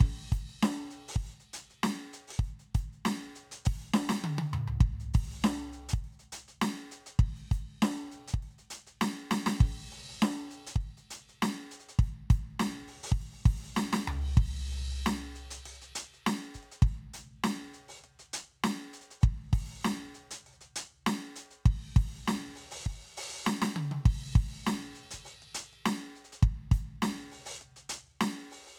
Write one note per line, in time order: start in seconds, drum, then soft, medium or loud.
0.01 kick loud
0.01 crash loud
0.32 closed hi-hat loud
0.32 kick medium
0.49 closed hi-hat soft
0.63 snare loud
0.91 closed hi-hat medium
1.09 open hi-hat loud
1.16 kick medium
1.23 open hi-hat medium
1.32 hi-hat pedal soft
1.40 closed hi-hat soft
1.54 closed hi-hat loud
1.71 closed hi-hat soft
1.84 snare loud
1.99 closed hi-hat soft
2.14 closed hi-hat medium
2.28 open hi-hat medium
2.31 open hi-hat medium
2.40 kick medium
2.44 hi-hat pedal soft
2.44 open hi-hat soft
2.60 closed hi-hat soft
2.75 closed hi-hat loud
2.75 kick medium
2.93 closed hi-hat soft
3.06 snare loud
3.22 closed hi-hat soft
3.36 closed hi-hat medium
3.52 closed hi-hat medium
3.66 open hi-hat loud
3.66 kick medium
3.81 open hi-hat medium
3.94 snare loud
4.09 snare loud
4.24 high tom loud
4.39 high tom loud
4.54 mid tom loud
4.68 floor tom loud
4.81 kick loud
5.00 closed hi-hat medium
5.14 open hi-hat loud
5.14 kick loud
5.33 open hi-hat medium
5.44 snare loud
5.59 closed hi-hat soft
5.73 closed hi-hat medium
5.89 closed hi-hat loud
5.94 kick medium
6.04 open hi-hat soft
6.12 hi-hat pedal soft
6.20 closed hi-hat medium
6.33 closed hi-hat loud
6.48 closed hi-hat medium
6.62 snare loud
6.77 closed hi-hat medium
6.92 closed hi-hat medium
7.07 closed hi-hat medium
7.20 kick loud
7.20 hi-hat pedal soft
7.20 crash medium
7.37 closed hi-hat soft
7.52 closed hi-hat loud
7.52 kick medium
7.69 closed hi-hat soft
7.83 snare loud
7.98 closed hi-hat medium
8.12 closed hi-hat medium
8.28 closed hi-hat medium
8.34 kick medium
8.43 open hi-hat soft
8.51 hi-hat pedal soft
8.59 closed hi-hat soft
8.71 closed hi-hat loud
8.87 closed hi-hat medium
9.02 snare loud
9.17 closed hi-hat medium
9.31 snare loud
9.47 snare loud
9.61 kick loud
9.61 crash loud
9.79 open hi-hat soft
9.92 open hi-hat medium
10.09 open hi-hat soft
10.21 snare loud
10.21 hi-hat pedal soft
10.38 closed hi-hat medium
10.51 closed hi-hat medium
10.67 closed hi-hat loud
10.76 kick medium
10.81 open hi-hat soft
10.89 hi-hat pedal soft
10.98 closed hi-hat soft
11.11 closed hi-hat loud
11.29 closed hi-hat soft
11.43 snare loud
11.57 closed hi-hat soft
11.71 closed hi-hat medium
11.80 closed hi-hat soft
11.89 closed hi-hat medium
11.99 open hi-hat medium
11.99 kick loud
12.06 hi-hat pedal soft
12.30 open hi-hat loud
12.30 kick loud
12.60 snare loud
12.88 open hi-hat medium
13.04 open hi-hat loud
13.12 kick medium
13.20 open hi-hat soft
13.33 open hi-hat soft
13.46 open hi-hat loud
13.46 kick loud
13.62 open hi-hat medium
13.77 snare loud
13.93 snare loud
14.08 floor tom loud
14.22 crash medium
14.38 kick loud
14.38 crash loud
14.54 open hi-hat soft
14.72 open hi-hat soft
14.91 open hi-hat soft
15.06 snare loud
15.36 closed hi-hat medium
15.51 closed hi-hat loud
15.66 open hi-hat medium
15.75 hi-hat pedal soft
15.82 closed hi-hat medium
15.96 closed hi-hat loud
16.14 closed hi-hat soft
16.27 snare loud
16.42 closed hi-hat soft
16.55 closed hi-hat medium
16.55 kick soft
16.63 closed hi-hat soft
16.72 closed hi-hat medium
16.83 open hi-hat medium
16.83 kick loud
16.95 hi-hat pedal soft
17.14 closed hi-hat loud
17.44 snare loud
17.57 closed hi-hat soft
17.74 open hi-hat medium
17.89 open hi-hat medium
17.97 hi-hat pedal soft
18.04 closed hi-hat soft
18.20 closed hi-hat soft
18.34 closed hi-hat loud
18.52 closed hi-hat soft
18.64 snare loud
18.78 closed hi-hat soft
18.94 closed hi-hat medium
19.01 closed hi-hat soft
19.11 open hi-hat medium
19.21 open hi-hat soft
19.21 kick loud
19.53 open hi-hat loud
19.53 kick loud
19.72 open hi-hat soft
19.85 snare loud
19.96 closed hi-hat soft
19.96 hi-hat pedal soft
20.15 closed hi-hat medium
20.31 closed hi-hat loud
20.47 open hi-hat soft
20.53 hi-hat pedal soft
20.61 closed hi-hat soft
20.76 closed hi-hat loud
20.92 closed hi-hat soft
21.07 snare loud
21.21 closed hi-hat soft
21.36 closed hi-hat loud
21.51 closed hi-hat soft
21.66 kick loud
21.66 crash medium
21.82 open hi-hat soft
21.97 open hi-hat loud
21.97 kick loud
22.14 open hi-hat soft
22.28 snare loud
22.42 open hi-hat soft
22.55 open hi-hat medium
22.71 open hi-hat loud
22.87 open hi-hat medium
22.87 kick soft
22.95 kick soft
23.04 open hi-hat soft
23.17 open hi-hat loud
23.32 open hi-hat soft
23.47 snare loud
23.62 snare loud
23.76 high tom loud
23.92 high tom medium
24.06 kick loud
24.06 crash loud
24.20 open hi-hat soft
24.36 open hi-hat loud
24.36 kick loud
24.53 open hi-hat soft
24.67 snare loud
24.67 hi-hat pedal soft
24.82 closed hi-hat soft
24.96 closed hi-hat medium
25.11 closed hi-hat loud
25.11 kick soft
25.25 open hi-hat medium
25.30 hi-hat pedal soft
25.42 closed hi-hat soft
25.55 closed hi-hat loud
25.73 closed hi-hat soft
25.86 snare loud
26.01 closed hi-hat soft
26.16 closed hi-hat soft
26.25 closed hi-hat medium
26.33 closed hi-hat medium
26.43 open hi-hat medium
26.43 kick loud
26.43 hi-hat pedal soft
26.72 closed hi-hat loud
26.72 kick loud
26.87 open hi-hat soft
27.03 snare loud
27.17 open hi-hat medium
27.32 open hi-hat medium
27.46 open hi-hat loud
27.55 hi-hat pedal soft
27.62 closed hi-hat soft
27.77 closed hi-hat medium
27.90 closed hi-hat loud
28.07 open hi-hat soft
28.21 snare loud
28.36 open hi-hat soft
28.52 open hi-hat medium
28.67 open hi-hat soft